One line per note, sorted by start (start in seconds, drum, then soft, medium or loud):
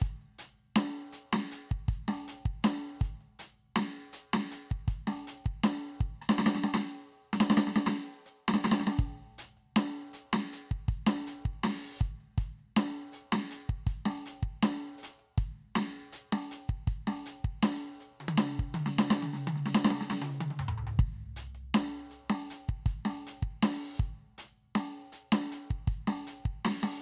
0.01 closed hi-hat loud
0.01 kick medium
0.01 hi-hat pedal medium
0.21 closed hi-hat soft
0.39 closed hi-hat loud
0.58 closed hi-hat soft
0.76 closed hi-hat loud
0.76 snare loud
1.13 closed hi-hat loud
1.33 snare loud
1.52 closed hi-hat loud
1.70 kick soft
1.70 closed hi-hat soft
1.88 closed hi-hat loud
1.88 kick medium
2.08 snare loud
2.28 closed hi-hat loud
2.45 kick medium
2.45 closed hi-hat soft
2.63 closed hi-hat loud
2.63 snare loud
2.63 hi-hat pedal medium
3.00 closed hi-hat loud
3.00 kick medium
3.00 hi-hat pedal medium
3.21 closed hi-hat soft
3.39 closed hi-hat loud
3.76 closed hi-hat loud
3.76 snare loud
3.94 closed hi-hat soft
4.13 closed hi-hat loud
4.33 snare loud
4.51 closed hi-hat loud
4.70 kick soft
4.70 closed hi-hat soft
4.88 closed hi-hat loud
4.88 kick medium
5.07 snare medium
5.27 closed hi-hat loud
5.45 kick soft
5.45 closed hi-hat soft
5.63 closed hi-hat loud
5.63 snare loud
6.00 kick medium
6.00 hi-hat pedal medium
6.22 cross-stick medium
6.29 snare loud
6.38 snare loud
6.38 hi-hat pedal soft
6.46 snare loud
6.55 snare medium
6.64 snare loud
6.74 snare loud
7.33 snare medium
7.40 snare loud
7.50 snare loud
7.50 hi-hat pedal soft
7.57 snare loud
7.67 snare medium
7.76 snare loud
7.86 snare loud
8.26 hi-hat pedal medium
8.40 closed hi-hat soft
8.48 snare loud
8.54 snare loud
8.64 snare loud
8.72 snare loud
8.80 snare medium
8.87 snare loud
8.99 closed hi-hat loud
8.99 kick medium
9.38 closed hi-hat loud
9.57 closed hi-hat soft
9.76 closed hi-hat loud
9.76 snare loud
10.13 closed hi-hat loud
10.33 snare loud
10.53 closed hi-hat loud
10.69 kick soft
10.69 closed hi-hat soft
10.88 closed hi-hat loud
10.88 kick medium
11.07 snare loud
11.27 closed hi-hat loud
11.45 kick soft
11.64 open hi-hat loud
11.64 snare loud
11.99 closed hi-hat loud
11.99 kick medium
11.99 hi-hat pedal medium
12.20 closed hi-hat soft
12.38 closed hi-hat loud
12.38 kick medium
12.59 closed hi-hat soft
12.77 closed hi-hat loud
12.77 snare loud
13.13 open hi-hat medium
13.32 snare loud
13.51 closed hi-hat loud
13.69 kick soft
13.69 closed hi-hat soft
13.87 closed hi-hat loud
13.87 kick medium
14.06 snare loud
14.26 closed hi-hat loud
14.43 kick soft
14.43 closed hi-hat soft
14.63 open hi-hat loud
14.63 snare loud
14.98 hi-hat pedal medium
15.03 closed hi-hat loud
15.19 closed hi-hat soft
15.38 closed hi-hat loud
15.38 kick medium
15.57 closed hi-hat soft
15.75 closed hi-hat loud
15.75 snare loud
15.75 hi-hat pedal soft
16.13 closed hi-hat loud
16.32 snare loud
16.51 closed hi-hat loud
16.69 kick soft
16.69 closed hi-hat soft
16.87 closed hi-hat loud
16.87 kick medium
17.07 snare medium
17.26 closed hi-hat loud
17.44 kick soft
17.44 closed hi-hat soft
17.60 open hi-hat loud
17.60 snare loud
17.60 hi-hat pedal soft
18.00 hi-hat pedal medium
18.20 high tom medium
18.28 high tom loud
18.38 snare loud
18.38 hi-hat pedal medium
18.59 kick soft
18.72 hi-hat pedal soft
18.72 high tom loud
18.86 snare medium
18.99 snare loud
19.10 snare loud
19.23 high tom loud
19.33 snare medium
19.47 hi-hat pedal soft
19.47 high tom loud
19.56 snare soft
19.66 snare medium
19.75 snare loud
19.85 snare loud
19.91 snare medium
20.01 snare medium
20.10 snare loud
20.22 hi-hat pedal medium
20.22 high tom medium
20.41 high tom medium
20.50 high tom medium
20.59 hi-hat pedal medium
20.59 mid tom medium
20.68 kick soft
20.68 mid tom loud
20.78 floor tom medium
20.87 floor tom soft
20.99 kick loud
21.36 closed hi-hat loud
21.55 closed hi-hat soft
21.74 closed hi-hat loud
21.74 snare loud
22.11 closed hi-hat medium
22.30 snare loud
22.50 closed hi-hat loud
22.68 kick soft
22.68 closed hi-hat soft
22.86 closed hi-hat loud
22.86 kick medium
23.05 snare medium
23.27 closed hi-hat loud
23.43 kick soft
23.63 open hi-hat loud
23.63 snare loud
24.00 closed hi-hat loud
24.00 kick medium
24.00 hi-hat pedal medium
24.18 closed hi-hat soft
24.38 closed hi-hat loud
24.75 closed hi-hat loud
24.75 snare loud
25.12 closed hi-hat medium
25.32 snare loud
25.52 closed hi-hat loud
25.70 kick soft
25.70 closed hi-hat soft
25.88 closed hi-hat loud
25.88 kick medium
26.08 snare loud
26.27 closed hi-hat loud
26.44 kick soft
26.44 closed hi-hat soft
26.65 open hi-hat loud
26.65 snare loud
26.83 open hi-hat loud
26.83 snare loud